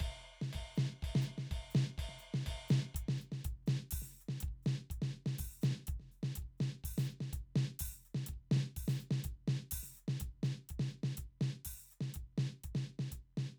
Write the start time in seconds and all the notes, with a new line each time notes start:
0.06 kick, ride
0.12 snare
0.16 snare
0.41 snare
0.53 kick, ride
0.60 kick
0.75 snare, hi-hat pedal
1.02 kick, ride
1.15 snare
1.21 hi-hat pedal
1.38 snare
1.51 kick, ride
1.70 hi-hat pedal
1.75 snare
1.98 kick, ride
2.09 snare
2.19 hi-hat pedal, ride
2.34 snare
2.46 kick, ride
2.52 kick
2.68 snare, hi-hat pedal
2.94 closed hi-hat, kick
3.08 snare
3.18 closed hi-hat, hi-hat pedal
3.32 snare
3.44 closed hi-hat, kick
3.66 snare, hi-hat pedal
3.91 open hi-hat, kick
4.02 snare
4.20 hi-hat pedal
4.29 snare
4.40 closed hi-hat, kick
4.48 kick
4.63 snare, hi-hat pedal
4.90 closed hi-hat, kick
5.02 snare
5.26 snare
5.38 open hi-hat, kick
5.44 kick
5.61 snare, hi-hat pedal
5.71 snare
5.87 closed hi-hat, kick
6.00 snare
6.11 open hi-hat, hi-hat pedal
6.23 snare
6.35 closed hi-hat, kick
6.42 kick
6.58 snare, hi-hat pedal
6.84 open hi-hat, kick
6.89 kick
6.98 snare
7.05 hi-hat pedal
7.10 closed hi-hat
7.20 snare
7.33 closed hi-hat, kick
7.56 snare
7.79 open hi-hat, kick
7.85 kick
7.92 snare
8.03 hi-hat pedal, open hi-hat
8.15 snare
8.26 closed hi-hat, kick
8.33 kick
8.51 snare
8.56 snare
8.76 open hi-hat, kick
8.88 snare
8.99 closed hi-hat, hi-hat pedal
9.11 snare
9.24 closed hi-hat, kick
9.48 snare
9.71 open hi-hat, kick
9.77 kick
9.83 snare
9.95 open hi-hat, hi-hat pedal
10.08 snare
10.20 closed hi-hat, kick
10.43 snare, hi-hat pedal
10.69 kick, closed hi-hat
10.79 snare
10.89 hi-hat pedal
11.03 snare
11.17 closed hi-hat, kick
11.41 snare
11.65 open hi-hat, kick
11.91 hi-hat pedal
12.01 snare
12.14 closed hi-hat, kick
12.38 snare
12.64 closed hi-hat, kick
12.75 snare
12.99 snare
13.11 closed hi-hat, kick
13.37 snare